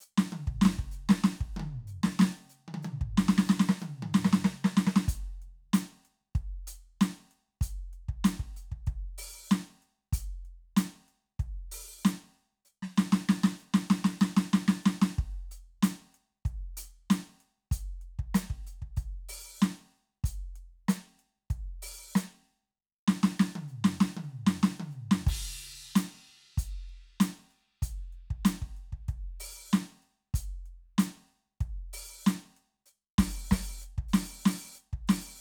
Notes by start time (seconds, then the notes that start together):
0.01 hi-hat pedal
0.18 snare
0.31 hi-hat pedal, high tom
0.48 kick
0.62 snare, hi-hat pedal
0.66 snare
0.79 kick
0.92 hi-hat pedal
1.10 snare
1.24 snare, hi-hat pedal
1.41 kick
1.54 hi-hat pedal, high tom
1.60 high tom
1.79 high tom
1.88 hi-hat pedal
2.04 snare
2.06 snare
2.20 snare
2.22 snare
2.50 hi-hat pedal
2.69 high tom
2.75 high tom
2.83 hi-hat pedal, high tom
3.02 kick
3.18 snare
3.29 snare
3.39 snare
3.46 snare, hi-hat pedal
3.60 snare
3.69 snare
3.81 hi-hat pedal, high tom
4.03 high tom
4.14 snare, hi-hat pedal
4.25 snare
4.33 snare
4.45 snare
4.65 snare
4.78 snare, hi-hat pedal
4.87 snare
4.96 snare
5.09 closed hi-hat, kick
5.43 closed hi-hat
5.74 closed hi-hat, snare
6.06 closed hi-hat
6.36 kick, closed hi-hat
6.68 open hi-hat
7.01 closed hi-hat, snare, hi-hat pedal
7.32 closed hi-hat
7.62 closed hi-hat, kick
7.94 closed hi-hat
8.09 kick
8.25 closed hi-hat, snare
8.40 kick
8.57 closed hi-hat
8.72 kick
8.87 kick, closed hi-hat
9.19 open hi-hat
9.51 snare, closed hi-hat, hi-hat pedal
9.83 closed hi-hat
10.13 closed hi-hat, kick
10.46 closed hi-hat
10.77 closed hi-hat, snare
11.09 closed hi-hat
11.40 kick, closed hi-hat
11.72 open hi-hat
12.05 open hi-hat, snare, hi-hat pedal
12.66 hi-hat pedal
12.83 snare
12.96 snare, hi-hat pedal
13.13 snare
13.28 snare, hi-hat pedal
13.44 snare
13.59 hi-hat pedal
13.74 snare
13.91 snare
14.05 snare
14.21 snare, hi-hat pedal
14.37 snare
14.52 snare, hi-hat pedal
14.69 snare
14.83 snare, hi-hat pedal
15.02 snare
15.19 kick
15.52 closed hi-hat
15.83 closed hi-hat, snare
16.15 closed hi-hat
16.46 kick, closed hi-hat
16.78 open hi-hat
17.11 closed hi-hat, snare, hi-hat pedal
17.41 closed hi-hat
17.72 closed hi-hat, kick
18.02 closed hi-hat
18.19 kick
18.35 closed hi-hat, snare
18.51 kick
18.67 closed hi-hat
18.83 kick
18.97 closed hi-hat, kick
19.29 open hi-hat
19.63 open hi-hat, snare, hi-hat pedal
20.24 closed hi-hat, kick
20.56 closed hi-hat
20.89 closed hi-hat, snare
21.20 closed hi-hat
21.51 kick, closed hi-hat
21.83 open hi-hat
22.16 closed hi-hat, snare, hi-hat pedal
23.08 snare
23.24 snare
23.38 snare, hi-hat pedal
23.56 high tom
23.69 hi-hat pedal
23.85 snare
24.00 snare, hi-hat pedal
24.17 high tom
24.47 snare
24.62 snare, hi-hat pedal
24.80 high tom
24.91 hi-hat pedal
25.12 snare
25.27 kick, crash
25.96 closed hi-hat, snare
26.28 closed hi-hat
26.58 closed hi-hat, kick
26.90 closed hi-hat
27.21 closed hi-hat, snare
27.51 closed hi-hat
27.83 closed hi-hat, kick
28.13 closed hi-hat
28.31 kick
28.46 closed hi-hat, snare
28.62 kick
28.77 closed hi-hat
28.93 kick
29.09 kick, closed hi-hat
29.41 open hi-hat
29.74 open hi-hat, snare, hi-hat pedal
30.03 closed hi-hat
30.35 closed hi-hat, kick
30.66 closed hi-hat
30.99 closed hi-hat, snare
31.61 kick, closed hi-hat
31.94 open hi-hat
32.27 open hi-hat, snare, hi-hat pedal
32.57 closed hi-hat
32.86 hi-hat pedal
33.19 open hi-hat, kick, snare
33.52 open hi-hat, kick, snare
33.81 hi-hat pedal
33.98 kick
34.09 hi-hat pedal
34.14 open hi-hat, snare
34.46 open hi-hat, snare
34.75 hi-hat pedal
34.93 kick
35.08 open hi-hat, snare, hi-hat pedal